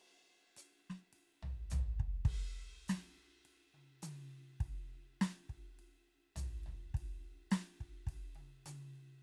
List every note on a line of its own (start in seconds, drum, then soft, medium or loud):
0.01 ride soft
0.58 hi-hat pedal medium
0.58 ride medium
0.91 snare soft
1.14 ride soft
1.44 floor tom medium
1.71 floor tom medium
1.71 hi-hat pedal medium
2.01 kick soft
2.26 kick medium
2.26 crash soft
2.89 snare medium
2.89 hi-hat pedal medium
2.89 ride medium
3.16 ride soft
3.46 ride soft
3.74 high tom soft
3.74 ride soft
4.03 hi-hat pedal medium
4.03 high tom medium
4.03 ride medium
4.30 ride soft
4.61 kick soft
4.61 ride soft
5.22 snare medium
5.22 hi-hat pedal medium
5.22 ride medium
5.50 kick soft
5.50 ride soft
5.80 ride soft
6.37 floor tom medium
6.37 hi-hat pedal medium
6.37 ride medium
6.65 floor tom soft
6.65 ride soft
6.95 kick soft
6.95 ride medium
7.52 snare loud
7.52 hi-hat pedal medium
7.52 ride medium
7.81 kick soft
7.81 ride soft
8.08 kick soft
8.08 ride medium
8.36 high tom soft
8.36 ride soft
8.67 hi-hat pedal medium
8.67 high tom medium
8.67 ride medium
8.97 ride soft